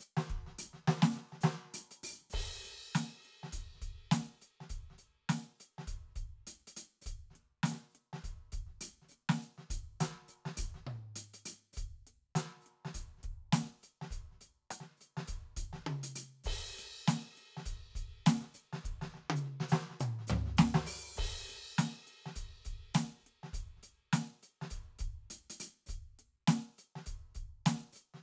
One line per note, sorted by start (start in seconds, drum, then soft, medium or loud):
0.01 hi-hat pedal medium
0.18 snare loud
0.31 kick soft
0.31 closed hi-hat soft
0.37 kick soft
0.40 kick soft
0.48 snare soft
0.52 kick soft
0.60 closed hi-hat loud
0.74 snare soft
0.89 snare loud
1.03 snare loud
1.12 hi-hat pedal medium
1.17 snare soft
1.33 snare soft
1.42 snare loud
1.42 hi-hat pedal medium
1.75 closed hi-hat loud
1.92 closed hi-hat medium
2.04 open hi-hat loud
2.31 kick medium
2.31 hi-hat pedal medium
2.31 crash loud
2.41 kick soft
2.44 kick soft
2.66 closed hi-hat soft
2.96 closed hi-hat loud
2.96 snare medium
3.26 closed hi-hat soft
3.44 snare medium
3.54 closed hi-hat medium
3.54 kick soft
3.75 snare soft
3.83 closed hi-hat medium
3.83 kick soft
3.91 kick soft
4.12 closed hi-hat loud
4.12 snare loud
4.43 closed hi-hat medium
4.62 snare soft
4.71 closed hi-hat medium
4.71 kick soft
4.91 snare soft
4.98 closed hi-hat soft
4.98 snare soft
5.30 closed hi-hat loud
5.30 snare medium
5.44 snare soft
5.61 closed hi-hat medium
5.79 snare medium
5.88 closed hi-hat medium
5.88 kick soft
5.94 kick soft
6.09 snare soft
6.17 closed hi-hat soft
6.17 kick soft
6.23 kick soft
6.48 closed hi-hat loud
6.61 closed hi-hat soft
6.68 closed hi-hat medium
6.78 closed hi-hat loud
7.03 hi-hat pedal medium
7.07 closed hi-hat medium
7.07 kick soft
7.31 snare soft
7.36 closed hi-hat soft
7.64 closed hi-hat loud
7.64 snare medium
7.70 snare soft
7.70 closed hi-hat medium
7.92 hi-hat pedal soft
7.96 closed hi-hat soft
8.14 snare medium
8.25 closed hi-hat medium
8.25 kick soft
8.53 closed hi-hat medium
8.53 kick soft
8.53 snare soft
8.62 kick soft
8.68 snare soft
8.70 snare soft
8.82 closed hi-hat loud
9.03 snare soft
9.10 closed hi-hat soft
9.10 hi-hat pedal soft
9.30 snare loud
9.43 closed hi-hat soft
9.59 snare soft
9.71 closed hi-hat loud
9.71 kick soft
9.77 kick soft
9.80 kick soft
10.01 closed hi-hat loud
10.01 snare loud
10.29 closed hi-hat soft
10.29 hi-hat pedal medium
10.46 snare medium
10.58 closed hi-hat loud
10.58 kick soft
10.66 kick soft
10.69 kick soft
10.75 snare soft
10.88 mid tom medium
11.17 closed hi-hat loud
11.35 closed hi-hat medium
11.47 closed hi-hat loud
11.74 closed hi-hat medium
11.74 hi-hat pedal medium
11.78 kick soft
11.84 kick soft
12.08 closed hi-hat medium
12.36 closed hi-hat loud
12.36 snare loud
12.62 hi-hat pedal soft
12.67 closed hi-hat soft
12.86 snare medium
12.95 closed hi-hat medium
12.95 kick soft
13.19 snare soft
13.24 kick soft
13.24 closed hi-hat medium
13.54 closed hi-hat loud
13.54 snare loud
13.65 snare soft
13.84 closed hi-hat medium
14.02 snare medium
14.12 closed hi-hat medium
14.12 kick soft
14.32 snare soft
14.42 closed hi-hat medium
14.42 snare soft
14.72 closed hi-hat loud
14.72 cross-stick medium
14.81 snare soft
14.98 closed hi-hat soft
14.98 hi-hat pedal soft
15.18 snare medium
15.29 closed hi-hat medium
15.29 kick soft
15.58 closed hi-hat loud
15.58 kick soft
15.67 kick soft
15.74 snare medium
15.88 high tom loud
16.04 closed hi-hat loud
16.17 open hi-hat loud
16.45 kick medium
16.45 hi-hat pedal medium
16.45 crash loud
16.53 kick soft
16.56 kick soft
16.80 closed hi-hat medium
17.09 closed hi-hat loud
17.09 snare loud
17.38 closed hi-hat soft
17.58 snare medium
17.67 closed hi-hat medium
17.67 kick soft
17.73 kick soft
17.94 closed hi-hat medium
17.94 kick soft
17.94 snare soft
18.02 kick soft
18.05 kick soft
18.27 closed hi-hat loud
18.27 snare loud
18.42 snare soft
18.55 closed hi-hat soft
18.55 hi-hat pedal medium
18.74 snare medium
18.86 kick soft
18.86 closed hi-hat medium
18.92 kick soft
19.03 snare medium
19.15 snare soft
19.31 high tom loud
19.37 hi-hat pedal medium
19.44 snare soft
19.61 snare medium
19.70 snare loud
19.70 hi-hat pedal medium
19.91 snare soft
20.01 hi-hat pedal loud
20.01 mid tom loud
20.20 snare soft
20.28 hi-hat pedal loud
20.28 floor tom loud
20.47 snare soft
20.58 kick soft
20.58 snare loud
20.58 hi-hat pedal loud
20.75 snare loud
20.87 open hi-hat loud
21.17 kick medium
21.17 hi-hat pedal medium
21.17 crash loud
21.27 kick soft
21.50 closed hi-hat soft
21.79 closed hi-hat loud
21.79 snare loud
22.08 closed hi-hat medium
22.27 snare medium
22.37 closed hi-hat medium
22.37 kick soft
22.66 closed hi-hat medium
22.66 kick soft
22.95 closed hi-hat loud
22.95 snare loud
23.21 kick soft
23.21 hi-hat pedal soft
23.27 closed hi-hat soft
23.44 snare soft
23.54 closed hi-hat medium
23.54 kick soft
23.60 kick soft
23.63 kick soft
23.78 snare soft
23.83 closed hi-hat medium
23.83 snare soft
24.14 closed hi-hat loud
24.14 snare loud
24.44 closed hi-hat soft
24.63 snare medium
24.71 closed hi-hat medium
24.71 kick soft
25.00 closed hi-hat medium
25.00 kick soft
25.07 kick soft
25.11 kick soft
25.31 closed hi-hat loud
25.51 closed hi-hat loud
25.61 closed hi-hat loud
25.87 closed hi-hat medium
25.87 kick soft
25.87 hi-hat pedal medium
26.20 closed hi-hat medium
26.49 closed hi-hat loud
26.49 snare loud
26.79 closed hi-hat soft
26.97 snare soft
27.07 closed hi-hat medium
27.07 kick soft
27.30 snare soft
27.36 closed hi-hat medium
27.36 kick soft
27.67 closed hi-hat loud
27.67 snare loud
27.78 snare soft
27.94 closed hi-hat soft
27.94 hi-hat pedal medium
28.15 snare soft